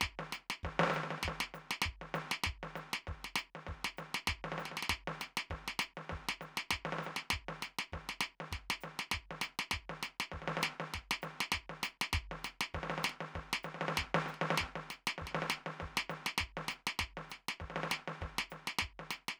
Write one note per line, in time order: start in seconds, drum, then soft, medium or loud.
0.01 kick soft
0.01 snare loud
0.19 snare soft
0.32 snare medium
0.32 hi-hat pedal medium
0.50 snare medium
0.63 kick soft
0.63 snare soft
0.79 snare loud
0.83 snare medium
0.88 snare soft
0.90 snare medium
0.90 hi-hat pedal medium
0.96 snare medium
1.03 snare soft
1.10 snare medium
1.18 snare soft
1.23 kick soft
1.23 snare loud
1.40 snare loud
1.54 snare soft
1.54 hi-hat pedal medium
1.71 snare loud
1.82 kick soft
1.82 snare loud
2.01 snare soft
2.14 snare medium
2.14 hi-hat pedal medium
2.31 snare loud
2.44 kick soft
2.44 snare loud
2.63 snare soft
2.76 snare soft
2.76 hi-hat pedal medium
2.93 snare loud
3.07 kick soft
3.07 snare soft
3.24 snare medium
3.36 snare loud
3.36 hi-hat pedal medium
3.55 snare soft
3.67 kick soft
3.67 snare soft
3.84 snare loud
3.97 snare soft
3.97 hi-hat pedal medium
4.14 snare loud
4.27 kick soft
4.27 snare loud
4.44 snare soft
4.52 snare medium
4.58 snare medium
4.58 hi-hat pedal soft
4.65 snare soft
4.71 snare soft
4.77 snare medium
4.82 snare medium
4.89 kick soft
4.89 snare loud
5.07 snare medium
5.20 snare medium
5.20 hi-hat pedal medium
5.37 snare loud
5.50 kick soft
5.50 snare soft
5.68 snare medium
5.79 snare loud
5.79 hi-hat pedal medium
5.97 snare soft
6.09 kick soft
6.09 snare soft
6.29 snare loud
6.41 snare soft
6.41 hi-hat pedal soft
6.57 snare loud
6.71 kick soft
6.71 snare loud
6.85 snare medium
6.92 snare medium
6.98 snare medium
7.03 snare soft
7.03 hi-hat pedal medium
7.16 snare medium
7.30 kick soft
7.30 snare loud
7.48 snare soft
7.62 snare medium
7.62 hi-hat pedal medium
7.79 snare loud
7.92 kick soft
7.92 snare soft
8.09 snare medium
8.21 snare loud
8.21 hi-hat pedal soft
8.40 snare soft
8.52 kick soft
8.52 snare medium
8.70 snare loud
8.81 snare soft
8.81 hi-hat pedal medium
8.99 snare medium
9.11 kick soft
9.11 snare loud
9.31 snare soft
9.41 snare loud
9.41 hi-hat pedal medium
9.59 snare loud
9.71 kick soft
9.71 snare loud
9.89 snare soft
10.03 snare medium
10.03 hi-hat pedal medium
10.20 snare loud
10.32 kick soft
10.32 snare soft
10.47 snare medium
10.57 snare medium
10.61 snare loud
10.61 hi-hat pedal soft
10.80 snare medium
10.94 kick soft
10.94 snare medium
11.11 snare loud
11.22 snare soft
11.22 hi-hat pedal medium
11.40 snare loud
11.52 kick soft
11.52 snare loud
11.69 snare soft
11.83 snare loud
11.83 hi-hat pedal medium
12.01 snare loud
12.13 kick soft
12.13 snare loud
12.31 snare soft
12.44 snare medium
12.44 hi-hat pedal medium
12.61 snare loud
12.74 kick soft
12.74 snare soft
12.83 snare medium
12.90 snare medium
12.98 snare medium
13.03 snare loud
13.03 hi-hat pedal medium
13.09 snare soft
13.20 snare soft
13.35 kick soft
13.35 snare soft
13.53 snare loud
13.63 snare soft
13.63 hi-hat pedal medium
13.81 snare medium
13.88 snare medium
13.97 kick soft
13.97 snare loud
14.14 snare loud
14.26 snare soft
14.26 hi-hat pedal soft
14.34 snare soft
14.41 snare medium
14.50 snare medium
14.57 kick soft
14.57 snare loud
14.76 snare soft
14.90 snare medium
14.90 hi-hat pedal soft
15.07 snare loud
15.18 kick soft
15.18 snare soft
15.27 snare soft
15.31 snare soft
15.35 snare medium
15.42 snare medium
15.50 snare loud
15.50 hi-hat pedal soft
15.66 snare medium
15.80 kick soft
15.80 snare soft
15.97 snare loud
16.09 snare medium
16.09 hi-hat pedal soft
16.26 snare loud
16.38 kick soft
16.38 snare loud
16.57 snare medium
16.68 snare loud
16.68 hi-hat pedal medium
16.87 snare loud
16.99 kick soft
16.99 snare loud
17.17 snare soft
17.29 snare soft
17.29 hi-hat pedal soft
17.48 snare loud
17.60 kick soft
17.60 snare soft
17.70 snare soft
17.76 snare medium
17.83 snare medium
17.90 snare loud
17.90 hi-hat pedal medium
18.08 snare medium
18.21 kick soft
18.21 snare soft
18.38 snare loud
18.50 snare soft
18.50 hi-hat pedal medium
18.67 snare medium
18.79 kick soft
18.79 snare loud
18.99 snare soft
19.10 snare medium
19.10 hi-hat pedal medium
19.28 snare medium